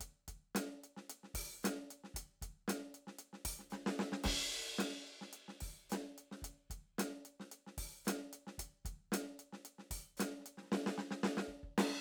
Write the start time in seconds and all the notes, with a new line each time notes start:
0.01 kick, closed hi-hat
0.29 kick, closed hi-hat
0.56 snare, closed hi-hat
0.84 closed hi-hat
0.97 snare
1.10 closed hi-hat
1.24 snare
1.35 kick, open hi-hat
1.64 snare, closed hi-hat, hi-hat pedal
1.91 closed hi-hat
2.05 snare
2.15 kick, closed hi-hat
2.42 kick, closed hi-hat
2.69 snare, closed hi-hat
2.95 closed hi-hat
3.08 snare
3.19 closed hi-hat
3.34 snare
3.46 kick, open hi-hat
3.60 snare
3.71 snare, hi-hat pedal
3.87 snare
4.00 snare
4.13 snare
4.25 kick, snare, ride
4.79 snare, closed hi-hat
5.08 closed hi-hat
5.22 snare
5.34 closed hi-hat
5.49 snare
5.61 kick, open hi-hat
5.90 snare, closed hi-hat, hi-hat pedal
6.19 closed hi-hat
6.32 snare
6.43 kick, closed hi-hat
6.71 kick, closed hi-hat
6.99 snare, closed hi-hat
7.26 closed hi-hat
7.41 snare
7.52 closed hi-hat
7.67 snare
7.78 kick, open hi-hat
8.06 snare, closed hi-hat, hi-hat pedal
8.34 closed hi-hat
8.48 snare
8.59 kick, closed hi-hat
8.86 kick, closed hi-hat
9.13 snare, closed hi-hat
9.40 closed hi-hat
9.53 snare
9.66 closed hi-hat
9.79 snare
9.92 kick, open hi-hat
10.18 snare, closed hi-hat, hi-hat pedal
10.41 snare
10.47 closed hi-hat
10.58 snare
10.63 snare
10.67 snare
10.73 snare
10.87 snare
10.99 snare
11.11 snare
11.24 snare
11.38 snare
11.49 kick
11.64 kick
11.79 snare, crash